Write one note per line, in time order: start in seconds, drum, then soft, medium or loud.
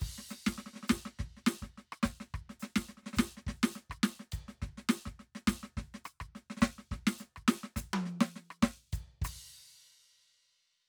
0.01 kick medium
0.01 crash medium
0.09 kick soft
0.14 kick soft
0.14 snare soft
0.28 snare soft
0.28 hi-hat pedal medium
0.46 kick soft
0.46 snare medium
0.58 snare soft
0.66 snare soft
0.73 snare soft
0.75 snare soft
0.83 snare soft
0.88 kick soft
0.88 snare loud
0.88 hi-hat pedal medium
0.97 kick soft
1.05 snare soft
1.19 kick soft
1.19 snare soft
1.26 kick soft
1.30 kick soft
1.37 snare soft
1.46 snare loud
1.46 hi-hat pedal medium
1.62 kick soft
1.62 snare soft
1.78 snare soft
1.92 cross-stick medium
2.03 kick soft
2.03 snare loud
2.03 hi-hat pedal medium
2.20 snare soft
2.34 kick soft
2.34 cross-stick medium
2.40 kick soft
2.49 snare soft
2.59 snare medium
2.59 hi-hat pedal medium
2.76 kick soft
2.76 snare medium
2.88 snare soft
2.97 snare soft
3.03 snare soft
3.06 snare medium
3.13 kick soft
3.13 snare soft
3.13 hi-hat pedal medium
3.19 snare loud
3.23 kick soft
3.37 snare soft
3.47 kick soft
3.47 snare medium
3.53 kick soft
3.63 snare loud
3.72 snare soft
3.72 hi-hat pedal medium
3.90 kick soft
3.90 cross-stick medium
4.03 snare loud
4.19 snare soft
4.32 kick soft
4.32 hi-hat pedal medium
4.32 floor tom medium
4.40 kick soft
4.42 kick soft
4.48 snare soft
4.62 kick soft
4.62 snare soft
4.68 kick soft
4.77 snare soft
4.89 snare loud
4.89 hi-hat pedal medium
5.05 kick soft
5.05 snare soft
5.19 snare soft
5.35 snare soft
5.47 kick soft
5.47 snare loud
5.47 hi-hat pedal medium
5.63 snare soft
5.77 kick soft
5.77 snare soft
5.83 kick soft
5.94 snare soft
6.04 cross-stick medium
6.04 hi-hat pedal medium
6.20 kick soft
6.20 cross-stick medium
6.35 snare soft
6.50 snare soft
6.57 snare soft
6.61 kick soft
6.61 snare loud
6.61 hi-hat pedal medium
6.70 kick soft
6.78 snare soft
6.91 kick soft
6.91 snare soft
6.98 kick soft
7.07 snare loud
7.18 snare soft
7.18 hi-hat pedal medium
7.36 kick soft
7.36 cross-stick medium
7.48 snare loud
7.63 snare soft
7.76 kick soft
7.76 snare medium
7.76 hi-hat pedal loud
7.85 kick soft
7.93 high tom loud
8.06 snare soft
8.21 snare loud
8.36 snare soft
8.50 cross-stick medium
8.62 kick soft
8.62 snare loud
8.68 kick soft
8.92 kick medium
8.92 hi-hat pedal medium
8.92 floor tom medium
9.00 kick soft
9.14 kick soft
9.22 kick medium
9.22 cross-stick medium
9.22 hi-hat pedal loud
9.22 crash medium
9.35 kick soft